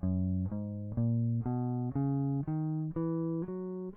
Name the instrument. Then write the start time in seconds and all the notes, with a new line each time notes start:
electric guitar
0.06 F#2
0.51 G#2
1.00 A#2
1.48 B2
1.97 C#3
2.50 D#3
2.98 E3
3.48 F#3